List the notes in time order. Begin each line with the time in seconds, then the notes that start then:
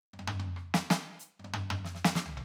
0.13 high tom
0.19 high tom
0.28 high tom
0.40 high tom
0.56 cross-stick
0.74 snare
0.90 snare
1.20 hi-hat pedal
1.40 high tom
1.44 high tom
1.54 high tom
1.70 high tom
1.85 snare
1.95 snare
2.05 snare
2.15 snare
2.26 mid tom
2.37 floor tom